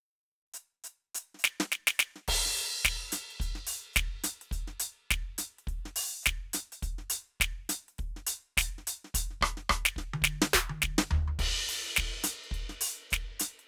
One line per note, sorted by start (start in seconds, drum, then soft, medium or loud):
0.53 hi-hat pedal medium
0.84 hi-hat pedal medium
1.14 hi-hat pedal loud
1.34 snare soft
1.39 hi-hat pedal medium
1.44 snare loud
1.60 snare loud
1.72 snare medium
1.87 snare loud
1.87 hi-hat pedal soft
1.99 snare loud
2.15 snare soft
2.28 kick medium
2.28 crash loud
2.46 snare soft
2.56 open hi-hat medium
2.84 kick soft
2.84 snare loud
2.84 hi-hat pedal soft
3.12 closed hi-hat loud
3.12 snare medium
3.30 closed hi-hat soft
3.40 closed hi-hat soft
3.40 kick medium
3.55 snare soft
3.67 open hi-hat loud
3.93 kick medium
3.93 snare loud
3.93 hi-hat pedal soft
4.23 closed hi-hat loud
4.23 snare medium
4.41 closed hi-hat soft
4.51 closed hi-hat soft
4.51 kick medium
4.67 snare soft
4.80 closed hi-hat loud
5.10 kick medium
5.10 snare loud
5.38 closed hi-hat loud
5.38 snare soft
5.58 closed hi-hat soft
5.67 kick medium
5.85 snare soft
5.96 open hi-hat loud
6.23 kick soft
6.23 snare loud
6.23 hi-hat pedal medium
6.53 closed hi-hat loud
6.53 snare medium
6.72 closed hi-hat soft
6.82 closed hi-hat soft
6.82 kick medium
6.98 snare soft
7.10 closed hi-hat loud
7.40 kick soft
7.40 snare loud
7.69 closed hi-hat loud
7.69 snare medium
7.88 closed hi-hat soft
7.99 kick soft
8.16 snare soft
8.26 closed hi-hat loud
8.57 closed hi-hat loud
8.57 kick medium
8.57 snare loud
8.78 snare soft
8.87 closed hi-hat loud
9.04 snare soft
9.14 closed hi-hat loud
9.14 kick medium
9.30 snare soft
9.41 kick soft
9.41 cross-stick loud
9.57 snare soft
9.69 kick medium
9.69 cross-stick loud
9.69 hi-hat pedal medium
9.85 snare loud
9.96 kick soft
9.96 snare soft
10.13 high tom loud
10.22 kick soft
10.22 snare loud
10.41 snare loud
10.53 kick soft
10.53 snare loud
10.69 high tom medium
10.82 kick soft
10.82 snare loud
10.98 snare loud
11.10 kick soft
11.10 floor tom loud
11.27 floor tom medium
11.39 kick medium
11.39 ride loud
11.69 open hi-hat medium
11.95 kick medium
11.95 snare loud
11.95 hi-hat pedal soft
12.23 closed hi-hat loud
12.23 snare medium
12.44 closed hi-hat soft
12.51 kick medium
12.51 closed hi-hat soft
12.69 snare soft
12.81 open hi-hat loud
13.10 kick soft
13.10 snare medium
13.10 hi-hat pedal medium
13.39 closed hi-hat loud
13.39 snare medium
13.59 closed hi-hat soft